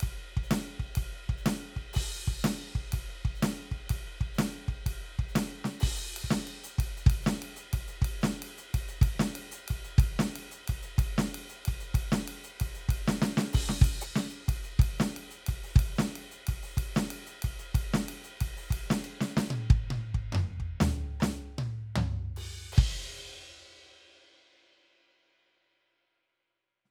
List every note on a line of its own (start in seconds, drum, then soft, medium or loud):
0.01 kick medium
0.01 ride loud
0.37 kick medium
0.44 hi-hat pedal soft
0.51 snare loud
0.51 ride loud
0.80 kick medium
0.96 kick medium
0.96 ride loud
1.30 kick medium
1.38 hi-hat pedal soft
1.46 snare loud
1.46 ride loud
1.77 kick medium
1.94 kick medium
1.94 crash loud
2.28 kick medium
2.38 hi-hat pedal soft
2.44 snare loud
2.44 ride loud
2.76 kick medium
2.93 kick medium
2.93 ride loud
3.25 kick medium
3.36 hi-hat pedal soft
3.43 snare loud
3.43 ride loud
3.72 kick medium
3.90 kick medium
3.90 ride loud
4.21 kick medium
4.35 hi-hat pedal soft
4.39 snare loud
4.39 ride loud
4.69 kick medium
4.86 kick medium
4.86 ride loud
5.19 kick medium
5.29 hi-hat pedal soft
5.36 snare loud
5.36 ride loud
5.65 snare medium
5.81 kick medium
5.81 crash loud
5.97 closed hi-hat medium
6.17 ride loud
6.24 kick soft
6.31 snare loud
6.48 ride medium
6.64 closed hi-hat loud
6.79 kick medium
6.79 ride loud
6.98 closed hi-hat medium
7.07 kick loud
7.07 ride loud
7.23 hi-hat pedal medium
7.27 snare loud
7.43 ride loud
7.57 closed hi-hat medium
7.73 kick medium
7.73 ride loud
7.88 open hi-hat medium
8.02 kick medium
8.02 ride loud
8.22 snare loud
8.22 hi-hat pedal medium
8.43 ride loud
8.58 closed hi-hat medium
8.74 kick medium
8.74 ride loud
8.89 closed hi-hat medium
9.02 kick loud
9.02 ride loud
9.20 snare loud
9.20 hi-hat pedal medium
9.36 ride loud
9.52 closed hi-hat loud
9.68 kick medium
9.68 ride loud
9.85 closed hi-hat medium
9.99 kick loud
9.99 ride loud
10.19 snare loud
10.19 hi-hat pedal medium
10.36 ride loud
10.52 closed hi-hat medium
10.68 kick medium
10.68 ride loud
10.83 closed hi-hat medium
10.99 kick loud
10.99 ride loud
11.18 snare loud
11.18 hi-hat pedal medium
11.35 ride loud
11.50 closed hi-hat medium
11.66 kick medium
11.66 ride loud
11.81 closed hi-hat medium
11.95 kick medium
11.95 ride loud
12.11 snare loud
12.11 hi-hat pedal medium
12.28 ride loud
12.44 closed hi-hat medium
12.60 kick medium
12.60 ride loud
12.75 closed hi-hat medium
12.89 kick medium
12.89 ride loud
13.07 snare loud
13.07 hi-hat pedal medium
13.22 snare loud
13.38 snare loud
13.54 kick loud
13.54 crash loud
13.69 snare medium
13.82 kick loud
13.82 ride loud
14.02 open hi-hat loud
14.02 hi-hat pedal medium
14.16 snare loud
14.30 closed hi-hat medium
14.49 kick medium
14.49 ride loud
14.64 closed hi-hat medium
14.80 kick loud
14.80 ride loud
14.99 snare loud
14.99 hi-hat pedal medium
15.17 ride loud
15.31 closed hi-hat medium
15.47 kick medium
15.47 ride loud
15.64 open hi-hat medium
15.76 kick loud
15.76 ride loud
15.96 snare loud
15.96 hi-hat pedal medium
16.16 ride loud
16.32 closed hi-hat medium
16.47 kick medium
16.47 ride loud
16.63 open hi-hat medium
16.78 kick medium
16.78 ride loud
16.95 snare loud
16.95 hi-hat pedal medium
17.11 ride loud
17.27 closed hi-hat medium
17.43 kick medium
17.43 ride loud
17.59 open hi-hat medium
17.75 kick medium
17.75 ride loud
17.94 snare loud
17.94 hi-hat pedal medium
18.09 ride loud
18.24 closed hi-hat medium
18.41 kick medium
18.41 ride loud
18.57 open hi-hat medium
18.71 kick medium
18.71 ride loud
18.83 hi-hat pedal soft
18.91 snare loud
19.05 ride bell medium
19.21 snare loud
19.37 kick soft
19.37 snare loud
19.51 high tom loud
19.70 kick loud
19.91 high tom loud
20.15 kick medium
20.33 mid tom loud
20.35 mid tom loud
20.60 kick medium
20.81 snare loud
20.81 floor tom loud
21.21 cross-stick medium
21.21 snare loud
21.59 high tom loud
21.96 floor tom loud
22.37 crash medium
22.73 ride loud
22.78 kick loud
23.02 mid tom soft
23.07 mid tom soft
26.85 snare soft